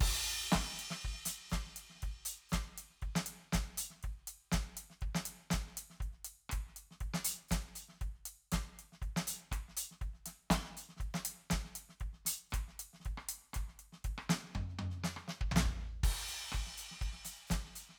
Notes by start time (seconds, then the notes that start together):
0.01 kick, crash, ride
0.52 kick, snare
0.70 snare
0.80 closed hi-hat
0.91 snare
1.02 kick, closed hi-hat
1.14 snare
1.26 open hi-hat, snare
1.50 kick, snare, closed hi-hat, hi-hat pedal
1.67 snare
1.77 closed hi-hat
1.90 snare
1.95 snare
1.99 snare, closed hi-hat
2.03 kick
2.26 open hi-hat
2.50 snare, closed hi-hat, hi-hat pedal
2.54 kick
2.78 closed hi-hat
2.91 snare
3.02 kick, closed hi-hat
3.16 snare
3.27 closed hi-hat
3.53 kick, snare, closed hi-hat
3.71 snare
3.78 closed hi-hat
3.91 snare
3.94 snare
3.98 snare
4.03 kick, closed hi-hat
4.18 snare
4.28 closed hi-hat
4.52 kick, snare, closed hi-hat
4.77 closed hi-hat
4.90 snare
5.01 kick, closed hi-hat
5.15 snare
5.26 closed hi-hat
5.51 kick, snare, closed hi-hat
5.68 snare
5.78 closed hi-hat
5.90 snare
5.93 snare
6.01 kick, closed hi-hat
6.12 snare
6.25 closed hi-hat
6.50 kick, cross-stick, closed hi-hat
6.68 snare
6.77 closed hi-hat
6.91 snare
7.01 kick, closed hi-hat
7.14 snare
7.25 open hi-hat
7.49 kick, snare, closed hi-hat, hi-hat pedal
7.66 snare
7.76 closed hi-hat
7.89 snare
7.92 snare
7.96 snare
8.02 kick, closed hi-hat
8.15 snare
8.26 closed hi-hat
8.52 kick, snare, closed hi-hat
8.79 closed hi-hat
8.93 snare
9.02 kick, closed hi-hat
9.17 snare
9.28 closed hi-hat
9.52 kick, cross-stick, closed hi-hat
9.69 snare
9.77 closed hi-hat
9.91 snare
10.02 kick, closed hi-hat
10.14 snare
10.26 snare, closed hi-hat
10.51 kick, snare, closed hi-hat
10.65 snare
10.77 closed hi-hat
10.89 snare
10.97 kick, snare
11.01 closed hi-hat
11.15 snare
11.26 closed hi-hat
11.51 kick, snare, closed hi-hat
11.65 snare
11.76 closed hi-hat
11.90 snare
12.01 kick, closed hi-hat
12.13 snare
12.26 closed hi-hat, snare
12.51 kick, cross-stick, closed hi-hat, hi-hat pedal
12.68 snare
12.80 closed hi-hat
12.94 snare
13.00 snare
13.05 kick, closed hi-hat
13.18 cross-stick
13.29 closed hi-hat
13.54 kick, cross-stick, closed hi-hat
13.69 snare
13.80 closed hi-hat
13.93 snare
14.05 kick, closed hi-hat
14.18 cross-stick
14.30 snare
14.44 snare
14.56 kick, high tom
14.69 snare
14.79 high tom
14.91 snare
15.04 snare
15.17 cross-stick
15.28 snare
15.41 kick
15.52 floor tom
15.57 snare
15.66 kick
16.04 kick, crash, ride
16.29 closed hi-hat
16.52 closed hi-hat, kick, cross-stick
16.67 snare
16.78 closed hi-hat
16.92 snare
17.02 kick, closed hi-hat
17.13 snare
17.25 open hi-hat, snare
17.48 snare, hi-hat pedal
17.52 kick, closed hi-hat
17.66 snare
17.76 closed hi-hat
17.89 snare